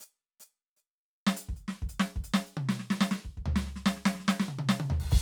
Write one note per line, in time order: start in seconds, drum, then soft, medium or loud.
0.00 hi-hat pedal medium
0.40 hi-hat pedal medium
0.50 closed hi-hat soft
0.76 hi-hat pedal soft
1.27 snare loud
1.37 closed hi-hat loud
1.48 kick medium
1.56 closed hi-hat soft
1.68 snare medium
1.82 kick medium
1.89 closed hi-hat medium
1.99 snare loud
2.16 kick medium
2.24 closed hi-hat medium
2.34 snare loud
2.46 closed hi-hat soft
2.57 high tom loud
2.69 snare loud
2.79 snare medium
2.90 snare loud
3.01 snare loud
3.11 snare loud
3.25 kick soft
3.37 kick soft
3.46 floor tom loud
3.56 snare loud
3.66 snare soft
3.76 snare medium
3.86 snare loud
3.96 snare soft
4.05 snare loud
4.15 snare medium
4.20 snare medium
4.24 snare soft
4.28 snare loud
4.40 snare loud
4.48 high tom medium
4.59 high tom loud
4.69 snare loud
4.80 high tom loud
4.90 floor tom loud
5.00 kick soft
5.00 crash medium
5.11 kick loud
5.11 crash loud